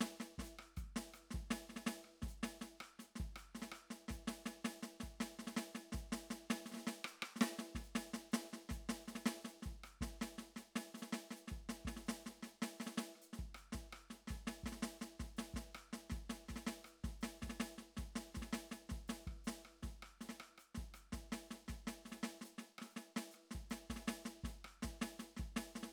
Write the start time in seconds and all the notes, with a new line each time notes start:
0.01 snare, hi-hat pedal
0.20 snare
0.39 kick, snare
0.41 snare, hi-hat pedal
0.59 cross-stick
0.77 kick, cross-stick, hi-hat pedal
0.96 snare
1.14 cross-stick, hi-hat pedal
1.31 kick, snare
1.51 snare, hi-hat pedal
1.70 snare
1.76 snare
1.87 snare, hi-hat pedal
2.04 cross-stick
2.22 kick, snare
2.29 hi-hat pedal
2.43 snare
2.61 snare, hi-hat pedal
2.81 cross-stick
2.99 snare, hi-hat pedal
3.16 snare
3.20 kick
3.36 cross-stick, hi-hat pedal
3.55 snare
3.62 snare
3.72 cross-stick, hi-hat pedal
3.91 snare
4.09 kick, snare, hi-hat pedal
4.15 kick
4.28 snare
4.46 snare, hi-hat pedal
4.65 snare
4.83 snare, hi-hat pedal
5.00 kick, snare
5.21 snare, hi-hat pedal
5.39 snare
5.47 snare
5.57 snare, hi-hat pedal
5.75 snare
5.93 kick, snare
5.97 hi-hat pedal
6.12 snare
6.31 snare, hi-hat pedal
6.50 snare
6.66 snare, hi-hat pedal
6.72 snare
6.74 snare
6.77 snare
6.78 snare
6.87 snare
7.05 cross-stick, hi-hat pedal
7.23 cross-stick
7.36 snare
7.41 snare
7.59 snare
7.75 kick, snare
7.84 hi-hat pedal
7.95 snare
8.14 snare
8.32 snare, hi-hat pedal
8.53 snare
8.69 kick, snare, hi-hat pedal
8.89 snare
9.08 snare, hi-hat pedal
9.15 snare
9.26 snare
9.45 snare, hi-hat pedal
9.63 kick, snare
9.84 cross-stick, hi-hat pedal
10.01 kick, snare
10.22 snare, hi-hat pedal
10.38 snare
10.56 snare, hi-hat pedal
10.76 snare
10.95 snare, hi-hat pedal
11.02 snare
11.13 snare
11.31 snare
11.36 hi-hat pedal
11.48 kick, snare
11.69 snare, hi-hat pedal
11.85 kick, snare
11.97 snare
12.07 snare, hi-hat pedal
12.26 snare
12.43 snare, hi-hat pedal
12.62 snare
12.80 snare, hi-hat pedal
12.87 snare
12.98 snare
13.16 cross-stick
13.22 hi-hat pedal
13.33 snare
13.39 kick
13.55 cross-stick, hi-hat pedal
13.73 kick, snare
13.92 cross-stick, hi-hat pedal
14.10 snare
14.28 snare, hi-hat pedal
14.30 kick, snare
14.47 snare
14.64 kick, snare
14.72 snare
14.83 snare
15.01 snare, hi-hat pedal
15.20 kick, snare
15.37 snare, hi-hat pedal
15.54 kick, snare
15.75 cross-stick, hi-hat pedal
15.93 snare
16.10 kick, snare, hi-hat pedal
16.30 snare
16.49 kick, snare, hi-hat pedal
16.56 snare
16.67 snare
16.85 cross-stick, hi-hat pedal
17.04 kick, snare
17.21 snare, hi-hat pedal
17.42 kick, snare
17.48 kick, snare
17.60 snare, hi-hat pedal
17.78 snare
17.97 kick, snare, hi-hat pedal
18.16 snare
18.35 kick, snare, hi-hat pedal
18.42 snare
18.53 snare
18.72 snare, hi-hat pedal
18.89 kick, snare
19.08 snare, hi-hat pedal
19.27 kick, cross-stick
19.45 snare, hi-hat pedal
19.65 cross-stick
19.83 kick, snare, hi-hat pedal
20.03 cross-stick
20.21 snare, hi-hat pedal
20.29 snare
20.40 cross-stick
20.58 cross-stick, hi-hat pedal
20.75 kick, snare
20.94 cross-stick, hi-hat pedal
21.13 kick, snare
21.32 snare, hi-hat pedal
21.51 snare
21.68 kick, snare, hi-hat pedal
21.87 snare
22.06 snare, hi-hat pedal
22.12 snare
22.23 snare
22.41 snare, hi-hat pedal
22.58 snare
22.79 cross-stick, snare
22.91 hi-hat pedal
22.97 snare
23.17 snare
23.31 cross-stick, hi-hat pedal
23.51 snare
23.55 kick
23.70 snare, hi-hat pedal
23.90 kick, snare
23.96 snare
24.07 snare, hi-hat pedal
24.26 snare
24.44 kick, snare, hi-hat pedal
24.65 cross-stick
24.83 kick, snare, hi-hat pedal
25.02 snare
25.20 snare, hi-hat pedal
25.37 kick, snare
25.57 snare, hi-hat pedal
25.76 snare
25.83 snare